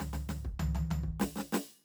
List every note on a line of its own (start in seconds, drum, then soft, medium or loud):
0.01 snare medium
0.01 floor tom medium
0.01 hi-hat pedal soft
0.13 snare medium
0.13 floor tom medium
0.29 snare medium
0.29 floor tom medium
0.45 kick medium
0.59 floor tom loud
0.59 high tom medium
0.75 floor tom medium
0.75 high tom medium
0.90 floor tom medium
0.90 high tom medium
1.03 kick medium
1.20 snare medium
1.20 snare loud
1.36 snare medium
1.38 snare medium
1.52 snare medium
1.54 snare loud